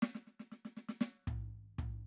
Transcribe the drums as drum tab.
PC |x---------------|
SD |ooooooooo-------|
FT |----------o---o-|
BD |----------o---o-|